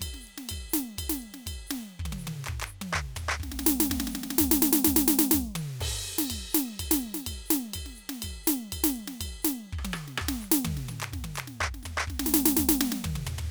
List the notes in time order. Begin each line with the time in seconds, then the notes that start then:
0.01 kick, ride bell
0.07 kick
0.14 snare
0.21 hi-hat pedal
0.27 ride
0.38 snare
0.49 kick, ride bell
0.57 kick
0.70 hi-hat pedal
0.74 snare
0.98 kick, ride bell
1.04 kick
1.10 snare
1.17 hi-hat pedal
1.22 ride
1.34 snare
1.47 kick, ride bell
1.67 snare, hi-hat pedal
2.00 kick
2.05 kick, mid tom
2.13 high tom
2.18 hi-hat pedal
2.27 mid tom
2.44 percussion
2.49 kick
2.55 kick
2.60 percussion
2.67 hi-hat pedal
2.82 high tom
2.93 kick, percussion
3.02 kick
3.16 floor tom, hi-hat pedal
3.29 percussion
3.40 kick, snare
3.47 kick
3.52 snare
3.59 snare, hi-hat pedal
3.67 snare
3.80 snare
3.90 kick, snare
3.96 kick, snare
4.07 snare, hi-hat pedal
4.15 snare
4.24 snare
4.31 snare
4.38 kick, snare
4.47 kick
4.51 snare
4.61 snare, hi-hat pedal
4.73 snare
4.85 kick, snare
4.96 snare
5.08 snare, hi-hat pedal
5.19 snare
5.31 kick, snare
5.41 kick
5.55 hi-hat pedal, mid tom
5.81 kick, crash
5.93 kick
6.02 hi-hat pedal
6.19 snare
6.30 kick, ride bell
6.37 kick
6.50 hi-hat pedal
6.55 snare
6.80 kick, ride bell
6.86 kick
6.91 snare
6.98 hi-hat pedal
7.02 ride
7.14 snare
7.27 kick, ride bell
7.33 kick
7.46 hi-hat pedal
7.51 snare
7.74 kick, ride bell
7.86 snare
7.95 hi-hat pedal, ride
8.09 snare
8.22 kick, ride bell
8.30 kick
8.44 snare, hi-hat pedal
8.72 kick, ride bell
8.78 kick
8.84 snare
8.92 hi-hat pedal
8.96 ride
9.08 snare
9.21 kick, ride bell
9.27 kick
9.42 snare, hi-hat pedal
9.73 kick
9.79 kick, cross-stick
9.85 high tom
9.93 cross-stick, hi-hat pedal
10.08 snare
10.18 kick, cross-stick
10.28 kick, snare
10.40 percussion, hi-hat pedal
10.52 snare
10.65 kick, mid tom
10.74 kick, snare
10.88 snare, hi-hat pedal, mid tom
11.00 percussion
11.13 kick, snare
11.19 kick
11.24 mid tom
11.35 percussion, hi-hat pedal
11.48 snare
11.61 kick, percussion
11.68 kick
11.74 snare
11.83 snare, floor tom, hi-hat pedal
11.97 percussion
12.08 kick, snare
12.14 kick
12.20 snare
12.26 snare
12.31 snare, hi-hat pedal
12.46 snare
12.57 kick, snare
12.69 snare
12.79 snare, hi-hat pedal
12.92 snare
13.04 kick, mid tom
13.11 kick
13.16 kick, mid tom
13.25 floor tom, hi-hat pedal
13.38 floor tom